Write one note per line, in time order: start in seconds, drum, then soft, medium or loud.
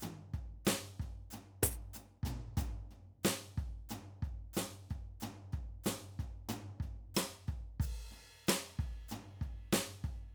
0.01 floor tom medium
0.01 hi-hat pedal medium
0.01 high tom medium
0.34 kick soft
0.34 floor tom soft
0.65 snare loud
0.65 floor tom loud
0.65 hi-hat pedal medium
1.00 kick soft
1.00 floor tom soft
1.31 floor tom medium
1.31 hi-hat pedal medium
1.63 kick soft
1.63 floor tom medium
1.63 high tom loud
1.94 floor tom medium
1.94 hi-hat pedal medium
2.24 kick soft
2.24 floor tom medium
2.24 mid tom medium
2.58 kick medium
2.58 floor tom loud
2.58 hi-hat pedal medium
2.91 floor tom soft
3.24 snare loud
3.24 floor tom medium
3.24 hi-hat pedal medium
3.58 kick medium
3.58 floor tom soft
3.90 floor tom loud
3.90 hi-hat pedal medium
4.23 kick soft
4.23 floor tom soft
4.54 snare loud
4.54 floor tom medium
4.54 hi-hat pedal medium
4.91 kick soft
4.91 floor tom soft
5.21 floor tom loud
5.21 hi-hat pedal medium
5.53 kick soft
5.53 floor tom soft
5.84 snare loud
5.84 floor tom loud
5.84 hi-hat pedal medium
6.20 kick soft
6.20 floor tom soft
6.49 floor tom loud
6.49 hi-hat pedal medium
6.81 kick soft
6.81 floor tom soft
7.15 snare loud
7.15 hi-hat pedal medium
7.15 floor tom loud
7.48 kick soft
7.48 floor tom soft
7.80 kick medium
7.80 hi-hat pedal medium
7.80 crash medium
8.12 floor tom soft
8.48 snare loud
8.48 hi-hat pedal medium
8.48 floor tom loud
8.79 kick medium
8.79 floor tom soft
9.09 floor tom loud
9.09 hi-hat pedal medium
9.42 kick soft
9.42 floor tom soft
9.73 snare loud
9.73 floor tom loud
9.73 hi-hat pedal medium
10.04 kick soft
10.04 floor tom soft